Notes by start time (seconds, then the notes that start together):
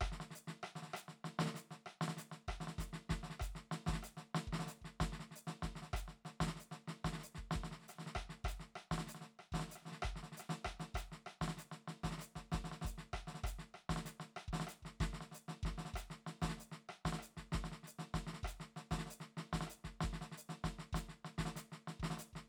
0.01 kick, cross-stick
0.12 snare
0.20 snare
0.31 snare
0.35 hi-hat pedal
0.48 snare
0.63 cross-stick
0.76 snare
0.83 snare
0.88 snare
0.94 cross-stick, hi-hat pedal
1.08 snare
1.25 snare
1.39 snare
1.46 snare
1.55 snare, hi-hat pedal
1.71 snare
1.86 cross-stick
2.01 snare
2.08 snare
2.17 snare, hi-hat pedal
2.32 snare
2.48 kick, cross-stick
2.61 snare
2.67 snare
2.79 kick, snare, hi-hat pedal
2.93 snare
3.10 kick, snare
3.23 snare
3.30 snare
3.40 kick, cross-stick, hi-hat pedal
3.55 snare
3.72 snare
3.87 kick, snare
3.93 snare
4.03 cross-stick, hi-hat pedal
4.17 snare
4.35 snare
4.47 kick
4.53 snare
4.60 snare
4.67 snare, hi-hat pedal
4.82 kick, snare
5.00 kick, snare
5.12 snare
5.20 snare
5.31 snare
5.36 hi-hat pedal
5.47 snare
5.63 kick, snare
5.76 snare
5.82 snare
5.89 snare
5.93 kick, cross-stick, hi-hat pedal
6.08 snare
6.25 snare
6.41 kick, snare
6.47 snare
6.56 snare
6.60 hi-hat pedal
6.72 snare
6.88 snare
7.05 kick, snare
7.13 snare
7.18 snare
7.24 hi-hat pedal
7.35 kick, snare
7.51 snare
7.56 kick
7.64 snare
7.72 snare
7.79 snare
7.81 snare
7.89 cross-stick, hi-hat pedal
7.96 snare
7.99 snare
8.07 snare
8.15 kick, cross-stick
8.30 snare
8.45 kick, cross-stick, hi-hat pedal
8.52 kick
8.60 snare
8.76 cross-stick
8.91 kick, snare
8.98 snare
9.07 snare, hi-hat pedal
9.15 snare
9.21 snare
9.39 cross-stick
9.52 kick, snare
9.60 snare
9.67 snare
9.71 hi-hat pedal
9.76 cross-stick
9.82 snare
9.86 snare
9.92 snare
10.02 kick, cross-stick
10.11 kick
10.16 snare
10.23 snare
10.32 snare
10.37 cross-stick, hi-hat pedal
10.50 snare
10.65 kick, cross-stick
10.80 snare
10.95 kick, cross-stick, hi-hat pedal
11.12 snare
11.26 cross-stick
11.41 kick, snare
11.48 snare
11.57 snare, hi-hat pedal
11.72 snare
11.88 snare
12.04 kick, snare
12.11 snare
12.18 snare, hi-hat pedal
12.36 kick, snare
12.52 kick, snare
12.64 snare
12.72 snare
12.82 kick, snare
12.87 hi-hat pedal
12.98 snare
13.14 kick, cross-stick
13.27 snare
13.35 snare
13.44 kick, cross-stick, hi-hat pedal
13.52 kick
13.59 snare
13.74 cross-stick
13.90 kick, snare
13.96 snare
14.05 snare, hi-hat pedal
14.20 snare
14.37 cross-stick
14.48 kick
14.53 snare
14.60 snare
14.67 cross-stick, hi-hat pedal
14.83 kick, snare
15.01 kick, snare
15.13 snare
15.21 snare
15.32 snare, hi-hat pedal
15.48 snare
15.63 kick, snare
15.71 kick
15.78 snare
15.85 snare
15.94 kick, cross-stick, hi-hat pedal
16.10 snare
16.27 snare
16.42 kick, snare
16.49 snare
16.57 snare, hi-hat pedal
16.72 snare
16.89 cross-stick
17.05 kick, snare
17.13 snare
17.19 cross-stick, hi-hat pedal
17.37 kick, snare
17.52 kick, snare
17.64 snare
17.72 snare
17.83 snare
17.88 hi-hat pedal
17.99 snare
18.14 kick, snare
18.27 snare
18.34 snare
18.43 kick, cross-stick
18.48 hi-hat pedal
18.60 snare
18.76 snare
18.91 kick, snare
18.99 snare
19.06 snare
19.11 hi-hat pedal
19.20 snare
19.37 snare
19.53 kick, snare
19.61 snare
19.67 cross-stick, hi-hat pedal
19.84 kick, snare
20.01 kick, snare
20.13 snare
20.21 snare
20.32 snare
20.38 hi-hat pedal
20.49 snare
20.64 kick, snare
20.79 snare
20.93 kick, snare, hi-hat pedal
21.09 snare
21.25 snare
21.38 kick, snare
21.46 snare
21.56 snare, hi-hat pedal
21.72 snare
21.88 snare
22.00 kick, snare
22.10 snare
22.18 snare, hi-hat pedal
22.33 kick, snare